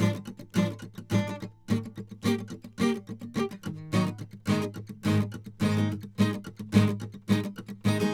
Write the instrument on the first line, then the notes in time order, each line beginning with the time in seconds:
acoustic guitar
0.00 A#2 F3 G#3 D4
0.55 A#2 F3 G#3
0.59 D4
1.11 A#2 E3 G#3
1.15 D4
1.28 D4
1.71 D#3 A#3
2.26 A#3 G4
2.82 A#3 G4
3.37 A#3 G4
3.68 D#3
3.94 D#3 F#3 D#4
4.06 D#4
4.49 D#3 G#3 D#4
4.63 G#4
5.04 G#2 D#3 G#3
5.09 D#4
5.61 G#2 D#3 G#3
5.65 D#4
5.79 G#3 D#4
5.93 G2
6.19 D3 G#3 D#4
6.73 G#2 D#3 G#3
6.78 D#4
7.30 D3 G#3 D#4
7.86 D#3 G#3 D#4 G#4
8.01 G#3 D#4 G#4
8.05 D#3